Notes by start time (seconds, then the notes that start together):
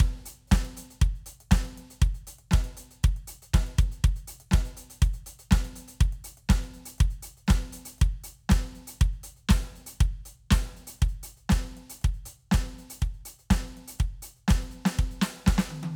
0.01 kick
0.27 closed hi-hat
0.48 hi-hat pedal
0.52 kick, snare
0.66 closed hi-hat
0.78 closed hi-hat
0.91 closed hi-hat
1.02 kick, closed hi-hat
1.16 closed hi-hat
1.27 closed hi-hat
1.41 closed hi-hat
1.52 kick, snare
1.66 closed hi-hat
1.78 closed hi-hat
1.91 closed hi-hat
2.03 kick, closed hi-hat
2.15 closed hi-hat
2.28 closed hi-hat
2.39 closed hi-hat
2.52 kick, snare
2.65 closed hi-hat
2.78 closed hi-hat
2.92 closed hi-hat
3.04 kick, closed hi-hat
3.17 closed hi-hat
3.28 closed hi-hat
3.43 closed hi-hat
3.55 kick, snare
3.67 closed hi-hat
3.79 closed hi-hat, kick
3.93 closed hi-hat
4.05 kick, closed hi-hat
4.17 closed hi-hat
4.28 closed hi-hat
4.41 closed hi-hat
4.52 kick, snare
4.66 closed hi-hat
4.78 closed hi-hat
4.91 closed hi-hat
5.03 kick, closed hi-hat
5.14 closed hi-hat
5.27 closed hi-hat
5.40 closed hi-hat
5.52 kick, snare
5.66 closed hi-hat
5.77 closed hi-hat
5.89 closed hi-hat
6.02 kick, closed hi-hat
6.13 closed hi-hat
6.25 closed hi-hat
6.38 closed hi-hat
6.50 kick, snare
6.65 closed hi-hat
6.75 closed hi-hat
6.86 closed hi-hat
6.99 kick, closed hi-hat
7.11 closed hi-hat
7.23 closed hi-hat
7.38 open hi-hat
7.48 kick, snare, hi-hat pedal
7.73 closed hi-hat
7.86 closed hi-hat
7.99 kick, closed hi-hat
8.25 closed hi-hat
8.39 closed hi-hat
8.50 kick, snare
8.65 closed hi-hat
8.76 closed hi-hat
8.88 closed hi-hat
9.01 kick, closed hi-hat
9.14 closed hi-hat
9.24 closed hi-hat
9.37 closed hi-hat
9.50 kick, snare
9.64 closed hi-hat
9.76 closed hi-hat
9.87 closed hi-hat
10.01 kick
10.26 closed hi-hat
10.38 closed hi-hat
10.52 kick, snare
10.77 closed hi-hat
10.88 closed hi-hat
11.00 kick, closed hi-hat
11.09 closed hi-hat
11.24 closed hi-hat
11.38 closed hi-hat
11.50 kick, snare
11.65 closed hi-hat
11.78 closed hi-hat
11.91 closed hi-hat
12.02 kick, closed hi-hat
12.14 closed hi-hat
12.26 closed hi-hat, kick
12.40 closed hi-hat
12.52 kick, snare
12.66 closed hi-hat
12.79 closed hi-hat
12.91 closed hi-hat
13.03 kick, closed hi-hat
13.14 closed hi-hat
13.22 kick
13.26 closed hi-hat
13.40 closed hi-hat
13.51 kick, snare
13.65 closed hi-hat
13.78 closed hi-hat
13.89 closed hi-hat
14.00 kick, closed hi-hat
14.23 closed hi-hat
14.37 closed hi-hat
14.49 kick, snare
14.63 closed hi-hat
14.72 closed hi-hat
14.86 snare
14.97 closed hi-hat, kick
15.12 closed hi-hat
15.22 snare
15.47 kick, snare
15.59 snare
15.71 high tom
15.84 high tom